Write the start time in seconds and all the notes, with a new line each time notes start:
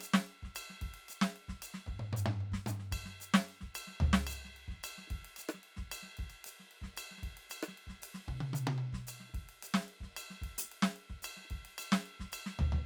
0.01 hi-hat pedal, ride bell
0.14 snare
0.27 ride
0.43 kick, snare
0.55 hi-hat pedal, ride bell
0.70 snare
0.81 kick, snare, ride
0.88 kick
0.94 ride
1.09 hi-hat pedal, ride bell
1.22 snare
1.36 ride
1.49 kick, snare
1.62 hi-hat pedal, ride bell
1.74 snare
1.87 kick, mid tom
1.94 kick
2.00 mid tom
2.13 hi-hat pedal, mid tom
2.26 mid tom
2.41 mid tom
2.52 kick, snare
2.67 hi-hat pedal, mid tom
2.80 snare
2.92 kick, ride bell
2.98 kick
3.06 snare
3.21 hi-hat pedal, ride
3.34 snare
3.49 ride
3.61 kick, snare
3.75 hi-hat pedal, ride bell
3.87 snare
4.00 kick, floor tom
4.09 kick
4.13 snare
4.22 snare
4.27 hi-hat pedal, ride bell
4.45 snare
4.57 ride
4.68 kick, snare
4.74 kick
4.84 hi-hat pedal, ride bell
4.98 snare
5.08 kick, cross-stick, ride
5.17 kick, snare
5.25 snare, ride
5.37 hi-hat pedal, ride bell
5.49 cross-stick
5.54 snare
5.64 ride
5.77 kick, snare
5.92 hi-hat pedal, ride bell
6.03 snare
6.17 kick, ride
6.25 kick
6.30 ride bell
6.45 hi-hat pedal, ride
6.60 snare
6.71 ride
6.82 kick, snare
6.97 hi-hat pedal, ride bell
7.11 snare
7.18 snare
7.23 kick, ride
7.35 snare, ride
7.50 hi-hat pedal, ride bell
7.63 cross-stick
7.68 snare
7.78 ride
7.87 kick, snare
8.02 hi-hat pedal, ride
8.15 snare
8.28 kick, high tom
8.41 open hi-hat, high tom
8.54 hi-hat pedal, high tom
8.67 high tom
8.78 high tom
8.93 kick, snare
8.98 kick
9.07 hi-hat pedal, ride bell
9.20 snare
9.30 cross-stick
9.34 kick, ride
9.41 kick
9.49 ride
9.63 hi-hat pedal, ride
9.74 snare
9.81 snare
9.89 ride
10.01 kick, snare
10.17 hi-hat pedal, ride bell
10.31 snare
10.42 kick, ride
10.48 kick
10.58 closed hi-hat
10.72 ride
10.83 snare
10.96 ride
11.10 kick, snare
11.22 hi-hat pedal, ride bell
11.37 snare
11.45 cross-stick
11.50 kick, ride
11.57 kick
11.65 snare, ride
11.68 snare
11.78 hi-hat pedal, ride bell
11.92 snare
12.06 ride
12.20 kick, snare
12.32 hi-hat pedal, ride bell
12.46 snare
12.59 kick, floor tom
12.66 kick
12.72 floor tom